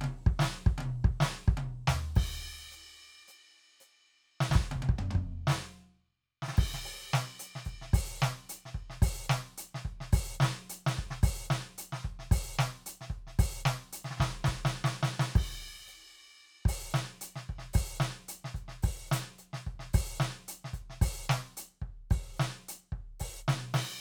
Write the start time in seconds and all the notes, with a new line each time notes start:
0.01 high tom
0.04 high tom
0.26 kick
0.39 snare
0.42 snare
0.66 kick
0.78 high tom
0.80 high tom
1.04 kick
1.20 snare
1.22 snare
1.48 kick
1.57 high tom
1.87 snare, floor tom
2.16 kick, crash
2.72 hi-hat pedal
3.28 hi-hat pedal
3.80 hi-hat pedal
4.41 snare
4.50 kick, snare
4.55 kick
4.71 high tom
4.76 kick
4.82 high tom
4.89 kick
4.99 kick, mid tom
5.11 mid tom
5.15 kick
5.43 kick, snare
5.50 snare
6.42 snare
6.48 snare, hi-hat pedal
6.53 snare
6.57 kick, crash
6.74 snare
6.85 open hi-hat
7.12 snare, hi-hat pedal
7.39 closed hi-hat
7.55 snare
7.65 closed hi-hat, kick
7.82 snare
7.93 open hi-hat, kick
8.20 snare, hi-hat pedal
8.49 closed hi-hat
8.65 snare
8.75 kick
8.90 snare
9.02 open hi-hat, kick
9.25 hi-hat pedal
9.30 snare
9.58 closed hi-hat
9.75 snare
9.85 kick
10.00 snare
10.13 open hi-hat, kick
10.34 hi-hat pedal
10.40 snare
10.42 snare
10.70 closed hi-hat
10.87 snare
10.98 kick
11.11 snare
11.23 open hi-hat, kick
11.45 hi-hat pedal
11.50 snare
11.78 closed hi-hat
11.92 snare
12.05 kick
12.19 snare
12.31 open hi-hat, kick
12.56 snare, hi-hat pedal
12.86 closed hi-hat
13.01 snare
13.10 kick, closed hi-hat
13.27 snare
13.39 open hi-hat, kick
13.60 hi-hat pedal
13.65 snare
13.93 closed hi-hat
14.05 snare
14.11 snare
14.17 kick, snare
14.20 snare
14.44 kick, snare
14.65 snare
14.84 snare
15.03 snare
15.20 snare
15.35 kick, crash
15.87 hi-hat pedal
16.65 open hi-hat, kick
16.92 snare, hi-hat pedal
17.21 closed hi-hat
17.36 snare
17.49 kick
17.59 snare
17.73 open hi-hat, kick
17.97 snare, hi-hat pedal
18.28 closed hi-hat
18.44 snare
18.54 closed hi-hat, kick
18.68 snare
18.83 open hi-hat, kick
19.08 snare, hi-hat pedal
19.13 closed hi-hat
19.38 closed hi-hat
19.53 snare
19.67 kick
19.79 snare
19.94 open hi-hat, kick
20.18 snare, hi-hat pedal
20.48 closed hi-hat
20.64 snare
20.73 closed hi-hat, kick
20.90 snare
21.02 open hi-hat, kick
21.25 hi-hat pedal
21.29 snare
21.57 closed hi-hat
21.82 kick
22.10 open hi-hat, kick
22.36 snare, hi-hat pedal
22.69 closed hi-hat
22.92 kick
23.20 open hi-hat, kick
23.39 hi-hat pedal
23.48 snare, high tom
23.74 snare, crash